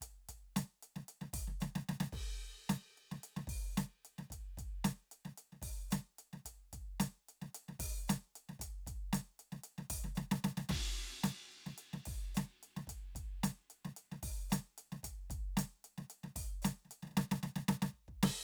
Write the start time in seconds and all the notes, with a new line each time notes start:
0.01 kick, closed hi-hat
0.29 kick, closed hi-hat
0.56 snare, closed hi-hat
0.83 closed hi-hat
0.96 snare
1.08 closed hi-hat
1.21 snare
1.33 kick, open hi-hat
1.47 snare
1.60 snare, hi-hat pedal
1.75 snare
1.89 snare
2.00 snare
2.12 kick, crash
2.69 snare, closed hi-hat
2.97 closed hi-hat
3.11 snare
3.23 closed hi-hat
3.36 snare
3.47 kick, open hi-hat
3.77 snare, hi-hat pedal, open hi-hat
4.05 closed hi-hat
4.18 snare
4.30 kick, closed hi-hat
4.57 kick, closed hi-hat
4.84 snare, closed hi-hat
5.11 closed hi-hat
5.25 snare
5.38 closed hi-hat
5.52 snare
5.62 kick, open hi-hat
5.91 snare, closed hi-hat, hi-hat pedal
6.19 closed hi-hat
6.33 snare
6.45 kick, closed hi-hat
6.73 kick, closed hi-hat
7.00 snare, closed hi-hat
7.29 closed hi-hat
7.42 snare
7.55 closed hi-hat
7.68 snare
7.79 kick, open hi-hat
8.08 snare, closed hi-hat, hi-hat pedal
8.35 closed hi-hat
8.49 snare
8.59 kick, closed hi-hat
8.87 kick, closed hi-hat
9.13 snare, closed hi-hat
9.39 closed hi-hat
9.52 snare
9.64 closed hi-hat
9.78 snare
9.90 kick, open hi-hat
10.04 snare
10.15 snare, hi-hat pedal
10.31 snare
10.44 snare
10.57 snare
10.69 kick, snare, ride
11.24 snare, closed hi-hat
11.52 closed hi-hat
11.66 snare
11.78 closed hi-hat
11.93 snare
12.05 kick, open hi-hat
12.34 snare, closed hi-hat, hi-hat pedal
12.63 closed hi-hat
12.76 snare
12.87 kick, closed hi-hat
13.15 kick, closed hi-hat
13.43 snare, closed hi-hat
13.70 closed hi-hat
13.85 snare
13.97 closed hi-hat
14.12 snare
14.23 kick, open hi-hat
14.50 snare, closed hi-hat, hi-hat pedal
14.78 closed hi-hat
14.92 snare
15.03 kick, closed hi-hat
15.30 kick, closed hi-hat
15.57 snare, closed hi-hat
15.84 closed hi-hat
15.98 snare
16.10 closed hi-hat
16.23 snare
16.36 kick, open hi-hat
16.62 snare, closed hi-hat, hi-hat pedal
16.85 snare
16.91 closed hi-hat
17.02 snare
17.07 snare
17.11 snare
17.17 snare
17.31 snare
17.43 snare
17.56 snare
17.68 snare
17.82 snare
17.93 kick
18.08 kick
18.23 snare, crash